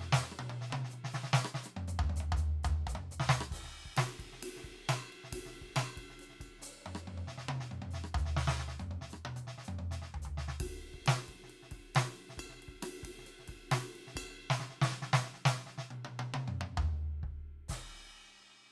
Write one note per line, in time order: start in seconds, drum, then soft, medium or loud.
0.01 snare soft
0.13 snare loud
0.13 hi-hat pedal loud
0.24 snare medium
0.32 cross-stick medium
0.40 high tom loud
0.50 high tom medium
0.62 snare medium
0.66 hi-hat pedal soft
0.71 snare soft
0.71 high tom loud
0.85 snare soft
0.91 hi-hat pedal medium
0.91 high tom soft
1.05 snare medium
1.13 snare medium
1.13 hi-hat pedal medium
1.24 snare medium
1.34 snare loud
1.34 hi-hat pedal medium
1.45 cross-stick medium
1.55 snare medium
1.64 cross-stick soft
1.64 hi-hat pedal loud
1.77 mid tom loud
1.88 hi-hat pedal loud
1.88 mid tom medium
2.00 floor tom loud
2.10 mid tom medium
2.17 hi-hat pedal loud
2.21 mid tom medium
2.33 floor tom loud
2.37 hi-hat pedal medium
2.64 hi-hat pedal loud
2.64 floor tom loud
2.87 hi-hat pedal loud
2.87 floor tom loud
2.96 mid tom medium
3.12 hi-hat pedal loud
3.20 snare loud
3.30 snare loud
3.30 hi-hat pedal medium
3.41 cross-stick medium
3.52 kick soft
3.52 hi-hat pedal loud
3.52 crash medium
3.64 kick soft
3.64 snare soft
3.75 kick soft
3.86 kick soft
3.91 kick soft
3.97 snare loud
3.97 hi-hat pedal medium
3.97 ride loud
4.07 snare soft
4.20 kick soft
4.20 ride medium
4.26 kick soft
4.34 snare soft
4.43 hi-hat pedal medium
4.43 ride loud
4.57 snare soft
4.65 kick soft
4.65 ride soft
4.70 kick soft
4.89 snare loud
4.89 hi-hat pedal medium
4.89 ride bell loud
5.13 ride soft
5.25 snare soft
5.33 kick soft
5.33 hi-hat pedal medium
5.33 ride loud
5.39 kick soft
5.46 snare soft
5.56 ride soft
5.62 kick soft
5.67 kick soft
5.77 snare loud
5.77 hi-hat pedal medium
5.77 ride bell loud
5.98 kick soft
5.98 ride medium
6.03 kick soft
6.10 snare soft
6.20 hi-hat pedal medium
6.20 ride medium
6.30 snare soft
6.41 kick soft
6.41 snare soft
6.41 ride bell medium
6.59 snare soft
6.59 hi-hat pedal loud
6.64 ride bell medium
6.69 snare soft
6.73 snare soft
6.87 mid tom medium
6.96 cross-stick medium
7.08 mid tom medium
7.28 snare medium
7.38 snare medium
7.49 high tom loud
7.61 snare medium
7.72 mid tom medium
7.83 mid tom medium
7.91 snare medium
7.91 hi-hat pedal medium
8.05 cross-stick medium
8.15 hi-hat pedal medium
8.15 floor tom loud
8.26 snare medium
8.37 snare loud
8.48 snare loud
8.48 hi-hat pedal medium
8.60 snare medium
8.69 snare medium
8.79 hi-hat pedal soft
8.79 mid tom medium
8.92 mid tom medium
9.02 snare medium
9.10 cross-stick medium
9.10 hi-hat pedal medium
9.26 high tom loud
9.37 hi-hat pedal medium
9.37 high tom medium
9.48 snare medium
9.59 snare soft
9.65 hi-hat pedal medium
9.69 mid tom loud
9.79 mid tom medium
9.92 snare medium
9.92 hi-hat pedal medium
10.03 snare soft
10.15 floor tom medium
10.23 floor tom medium
10.23 hi-hat pedal medium
10.38 snare medium
10.49 snare medium
10.61 kick medium
10.61 ride loud
10.79 kick soft
10.94 kick soft
11.07 snare loud
11.07 ride loud
11.29 kick soft
11.29 ride soft
11.44 snare soft
11.50 hi-hat pedal soft
11.50 ride medium
11.63 snare soft
11.72 kick soft
11.72 ride medium
11.95 snare loud
11.95 hi-hat pedal medium
11.95 ride loud
12.17 ride soft
12.30 snare soft
12.38 kick soft
12.38 hi-hat pedal soft
12.38 ride bell loud
12.43 kick soft
12.50 snare soft
12.56 snare soft
12.63 ride medium
12.69 kick soft
12.83 cross-stick medium
12.83 hi-hat pedal medium
12.83 ride loud
13.04 kick soft
13.04 ride medium
13.09 kick soft
13.19 snare soft
13.27 hi-hat pedal medium
13.27 ride medium
13.40 snare soft
13.49 kick soft
13.49 ride medium
13.55 kick soft
13.72 snare loud
13.72 hi-hat pedal medium
13.72 ride loud
13.96 ride soft
14.08 snare soft
14.16 kick soft
14.16 hi-hat pedal medium
14.16 ride bell loud
14.22 kick soft
14.28 snare soft
14.32 hi-hat pedal soft
14.51 snare loud
14.61 snare medium
14.70 snare soft
14.82 snare loud
14.92 snare soft
15.03 snare medium
15.14 snare loud
15.24 snare medium
15.34 snare soft
15.46 snare loud
15.58 snare soft
15.67 snare soft
15.78 snare medium
15.91 high tom medium
16.05 high tom medium
16.20 high tom loud
16.35 high tom loud
16.48 mid tom loud
16.62 mid tom medium
16.78 floor tom loud
17.24 kick medium
17.32 kick soft
17.38 kick soft
17.69 kick medium
17.69 snare medium
17.69 hi-hat pedal loud
17.69 crash medium
17.78 kick soft
17.85 kick soft